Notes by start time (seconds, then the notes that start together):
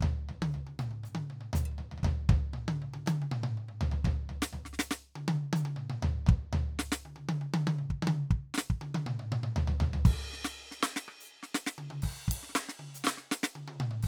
0.01 kick, floor tom
0.29 floor tom
0.42 high tom
0.52 floor tom, hi-hat pedal
0.67 high tom
0.79 hi-hat pedal, mid tom
0.91 high tom
1.04 hi-hat pedal, mid tom
1.15 high tom
1.30 mid tom
1.41 mid tom
1.53 floor tom, hi-hat pedal
1.66 percussion
1.72 floor tom
1.78 floor tom
1.92 floor tom
1.98 floor tom
2.03 kick, floor tom
2.29 kick, floor tom
2.54 mid tom
2.68 high tom
2.82 mid tom
2.94 high tom
3.06 hi-hat pedal, high tom
3.22 high tom
3.32 mid tom
3.44 mid tom
3.57 mid tom
3.69 mid tom
3.81 floor tom
3.92 floor tom
4.05 kick, floor tom
4.29 floor tom
4.42 snare
4.53 floor tom
4.65 snare
4.73 snare
4.79 snare, hi-hat pedal
4.91 snare
5.16 high tom
5.28 high tom
5.53 hi-hat pedal, high tom
5.65 high tom
5.76 mid tom
5.90 mid tom
6.03 floor tom
6.27 kick, floor tom
6.53 floor tom
6.79 snare
6.92 snare
7.05 high tom
7.16 high tom
7.29 high tom
7.41 high tom
7.54 high tom
7.67 high tom
7.79 mid tom
7.90 kick
8.03 high tom
8.07 high tom
8.31 kick
8.54 snare
8.58 snare
8.70 kick
8.81 high tom
8.95 high tom
9.07 mid tom
9.20 mid tom
9.32 mid tom
9.44 mid tom
9.56 floor tom
9.68 floor tom
9.80 floor tom
9.94 floor tom
10.05 kick, ride
10.33 snare
10.45 snare
10.72 snare
10.81 snare
10.83 snare
10.96 snare
11.08 cross-stick
11.21 open hi-hat
11.43 snare
11.55 snare
11.67 snare
11.78 high tom
11.91 high tom
12.03 kick, crash
12.28 kick, ride
12.43 snare
12.49 snare
12.55 snare
12.69 snare
12.79 high tom
12.95 hi-hat pedal
13.04 snare
13.07 snare
13.18 snare
13.32 snare
13.44 snare
13.56 high tom
13.68 high tom
13.80 mid tom
13.91 mid tom
14.03 kick, crash